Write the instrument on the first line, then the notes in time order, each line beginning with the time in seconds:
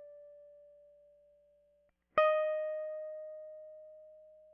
electric guitar
2.18 D#5